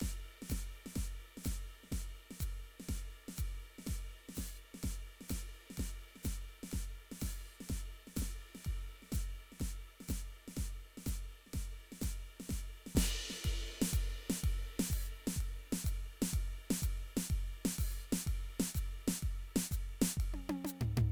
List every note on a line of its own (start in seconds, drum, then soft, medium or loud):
0.01 kick soft
0.01 snare soft
0.01 ride loud
0.42 snare soft
0.49 kick soft
0.49 snare soft
0.49 hi-hat pedal medium
0.49 ride loud
0.86 snare soft
0.96 kick soft
0.96 snare soft
0.96 ride loud
1.38 snare soft
1.44 kick soft
1.44 snare soft
1.44 hi-hat pedal loud
1.44 ride loud
1.84 snare soft
1.92 kick soft
1.92 snare soft
1.92 ride loud
2.31 snare soft
2.40 kick soft
2.40 hi-hat pedal loud
2.40 ride loud
2.80 snare soft
2.85 kick soft
2.85 hi-hat pedal soft
2.85 ride loud
2.90 snare soft
3.29 snare soft
3.37 kick soft
3.37 hi-hat pedal medium
3.37 ride loud
3.79 snare soft
3.87 kick soft
3.87 snare soft
3.87 ride loud
4.29 snare soft
4.35 kick soft
4.35 snare soft
4.35 hi-hat pedal medium
4.35 ride medium
4.75 snare soft
4.84 kick soft
4.84 snare soft
4.84 ride loud
5.21 snare soft
5.29 kick soft
5.29 snare soft
5.29 hi-hat pedal medium
5.29 ride loud
5.71 snare soft
5.78 kick soft
5.78 snare soft
5.78 ride loud
6.16 snare soft
6.24 kick soft
6.24 snare soft
6.24 hi-hat pedal medium
6.24 ride loud
6.64 snare soft
6.70 snare soft
6.70 hi-hat pedal soft
6.70 ride medium
6.74 kick soft
7.12 snare soft
7.20 kick soft
7.20 snare soft
7.20 hi-hat pedal medium
7.20 ride loud
7.61 snare soft
7.70 kick soft
7.70 snare soft
7.70 ride loud
8.08 snare soft
8.16 kick soft
8.16 snare soft
8.16 hi-hat pedal medium
8.16 ride loud
8.22 snare soft
8.55 snare soft
8.63 hi-hat pedal soft
8.63 ride medium
8.67 kick soft
9.03 snare soft
9.12 kick soft
9.12 snare soft
9.12 hi-hat pedal medium
9.12 ride loud
9.52 snare soft
9.60 kick soft
9.60 snare soft
9.60 ride medium
10.01 snare soft
10.08 kick soft
10.08 snare soft
10.08 hi-hat pedal medium
10.08 ride loud
10.48 snare soft
10.55 kick soft
10.55 snare soft
10.55 hi-hat pedal soft
10.55 ride medium
10.98 snare soft
11.06 kick soft
11.06 snare soft
11.06 hi-hat pedal medium
11.06 ride loud
11.47 snare soft
11.54 kick soft
11.54 snare soft
11.54 ride loud
11.93 snare soft
12.01 kick soft
12.01 snare soft
12.01 hi-hat pedal medium
12.01 ride loud
12.40 snare soft
12.49 kick soft
12.49 snare soft
12.49 hi-hat pedal soft
12.49 ride loud
12.87 snare soft
12.96 kick soft
12.96 snare medium
12.96 hi-hat pedal medium
12.96 ride medium
13.30 snare soft
13.45 kick soft
13.45 ride loud
13.82 snare medium
13.93 kick soft
13.93 hi-hat pedal medium
13.93 ride loud
14.30 snare medium
14.44 kick soft
14.44 ride loud
14.80 snare medium
14.91 kick soft
14.91 hi-hat pedal medium
14.91 ride loud
15.28 snare medium
15.37 kick soft
15.41 ride medium
15.73 snare medium
15.85 kick soft
15.85 hi-hat pedal medium
15.85 ride loud
16.23 snare medium
16.34 kick soft
16.34 ride loud
16.71 snare medium
16.82 kick soft
16.82 hi-hat pedal loud
16.82 ride loud
17.17 snare medium
17.31 kick soft
17.31 ride loud
17.66 snare medium
17.79 kick soft
17.79 hi-hat pedal medium
17.79 ride loud
18.13 snare medium
18.27 kick soft
18.27 ride loud
18.60 snare medium
18.75 kick soft
18.75 hi-hat pedal loud
18.75 ride loud
19.08 snare medium
19.23 kick soft
19.23 ride medium
19.57 snare medium
19.71 kick soft
19.71 hi-hat pedal loud
19.71 ride medium
20.02 snare medium
20.18 kick soft
20.18 ride loud
20.34 high tom medium
20.50 closed hi-hat soft
20.50 high tom loud
20.65 hi-hat pedal loud
20.65 high tom medium
20.82 floor tom medium
20.91 kick soft
20.98 floor tom loud